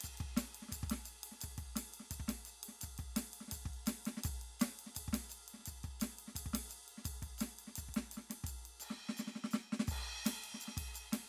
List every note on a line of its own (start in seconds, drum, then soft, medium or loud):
0.01 kick soft
0.01 ride medium
0.01 percussion medium
0.18 kick medium
0.18 ride medium
0.37 snare medium
0.37 ride loud
0.37 percussion medium
0.55 ride medium
0.62 snare soft
0.69 kick soft
0.69 snare soft
0.69 percussion medium
0.73 ride medium
0.83 kick medium
0.90 snare medium
0.90 ride loud
1.05 ride medium
1.05 percussion medium
1.24 ride medium
1.32 snare soft
1.41 kick soft
1.41 ride medium
1.41 percussion medium
1.58 kick soft
1.58 ride medium
1.76 snare medium
1.76 ride loud
1.76 percussion medium
1.94 ride medium
2.00 snare soft
2.11 kick soft
2.11 ride medium
2.11 percussion medium
2.20 kick soft
2.28 snare medium
2.28 ride loud
2.45 ride medium
2.45 percussion medium
2.63 ride medium
2.68 snare soft
2.81 kick soft
2.81 ride medium
2.81 percussion medium
2.98 kick soft
2.98 ride medium
3.16 snare medium
3.16 ride loud
3.16 percussion medium
3.33 ride medium
3.41 snare soft
3.48 snare soft
3.48 ride loud
3.52 kick soft
3.52 percussion medium
3.66 kick soft
3.74 ride soft
3.86 snare medium
3.86 ride loud
3.86 percussion medium
4.06 snare medium
4.06 ride medium
4.17 snare soft
4.24 kick medium
4.24 ride loud
4.24 percussion medium
4.42 ride soft
4.60 snare medium
4.60 ride loud
4.60 percussion medium
4.79 ride medium
4.86 snare soft
4.95 kick soft
4.95 ride loud
4.95 percussion medium
5.08 kick soft
5.13 snare medium
5.13 ride loud
5.30 ride medium
5.30 percussion medium
5.48 ride medium
5.54 snare soft
5.59 snare soft
5.66 kick soft
5.66 ride medium
5.66 percussion medium
5.84 kick soft
5.84 ride soft
6.00 snare medium
6.00 ride loud
6.00 percussion medium
6.19 ride medium
6.28 snare soft
6.34 kick soft
6.34 snare soft
6.34 ride loud
6.34 percussion medium
6.46 kick soft
6.54 snare medium
6.54 ride loud
6.70 ride medium
6.70 percussion medium
6.88 ride medium
6.98 snare soft
7.05 kick soft
7.05 ride loud
7.05 percussion medium
7.22 kick soft
7.22 ride medium
7.38 snare medium
7.38 ride loud
7.38 percussion medium
7.59 ride medium
7.67 snare soft
7.76 kick soft
7.76 ride medium
7.76 percussion medium
7.89 kick soft
7.94 snare medium
7.94 ride medium
8.12 ride medium
8.12 percussion medium
8.17 snare soft
8.30 snare soft
8.30 ride medium
8.44 kick soft
8.44 ride medium
8.44 percussion medium
8.65 ride medium
8.80 percussion medium
8.80 ride medium
8.90 snare soft
9.09 snare medium
9.17 snare medium
9.17 percussion medium
9.27 snare soft
9.36 snare soft
9.44 snare medium
9.51 snare medium
9.51 percussion medium
9.72 snare medium
9.80 snare medium
9.88 kick medium
9.88 percussion medium
9.88 ride medium
10.25 snare medium
10.25 ride loud
10.25 percussion medium
10.44 ride medium
10.52 kick soft
10.52 snare soft
10.61 ride medium
10.61 percussion medium
10.68 snare soft
10.77 kick soft
10.77 ride loud
10.95 ride medium
10.95 percussion medium
11.13 snare medium
11.13 ride loud